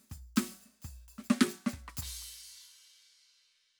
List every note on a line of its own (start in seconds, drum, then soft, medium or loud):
0.01 snare soft
0.04 snare soft
0.07 snare soft
0.07 percussion soft
0.12 kick soft
0.12 snare soft
0.12 percussion soft
0.18 kick soft
0.37 snare loud
0.37 percussion loud
0.51 snare soft
0.62 percussion soft
0.66 snare soft
0.70 snare soft
0.73 snare soft
0.80 snare soft
0.80 percussion soft
0.85 kick soft
0.85 percussion soft
1.09 percussion soft
1.19 snare soft
1.25 percussion soft
1.31 snare loud
1.42 snare loud
1.50 percussion medium
1.67 snare medium
1.67 percussion medium
1.74 kick soft
1.89 cross-stick medium
1.98 kick medium
1.98 cross-stick soft
1.98 percussion loud
2.03 kick soft
2.03 crash loud
2.15 percussion soft
2.23 cross-stick soft